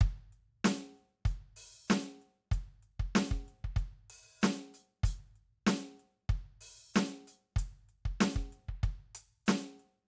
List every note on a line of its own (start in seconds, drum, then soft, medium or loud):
0.01 kick loud
0.01 closed hi-hat soft
0.32 closed hi-hat soft
0.64 closed hi-hat loud
0.64 snare loud
0.98 closed hi-hat soft
1.25 closed hi-hat soft
1.25 kick medium
1.56 open hi-hat medium
1.88 snare loud
1.88 closed hi-hat soft
1.88 hi-hat pedal medium
2.22 closed hi-hat soft
2.51 kick medium
2.51 closed hi-hat medium
2.83 closed hi-hat soft
2.99 kick medium
3.15 closed hi-hat medium
3.15 snare loud
3.31 kick medium
3.48 closed hi-hat soft
3.64 kick soft
3.76 kick medium
3.76 closed hi-hat soft
4.10 open hi-hat medium
4.41 closed hi-hat medium
4.41 snare loud
4.41 hi-hat pedal medium
4.74 closed hi-hat soft
5.03 closed hi-hat medium
5.03 kick medium
5.36 closed hi-hat soft
5.67 closed hi-hat medium
5.67 snare loud
5.99 closed hi-hat soft
6.29 kick medium
6.29 closed hi-hat soft
6.61 open hi-hat medium
6.94 snare loud
6.94 closed hi-hat soft
6.94 hi-hat pedal medium
7.27 closed hi-hat soft
7.56 kick medium
7.56 closed hi-hat medium
7.89 closed hi-hat soft
8.05 kick medium
8.20 snare loud
8.20 closed hi-hat medium
8.36 kick medium
8.52 closed hi-hat soft
8.68 kick soft
8.83 kick medium
8.83 closed hi-hat soft
9.15 open hi-hat loud
9.46 closed hi-hat medium
9.46 snare loud
9.46 hi-hat pedal medium
9.79 closed hi-hat soft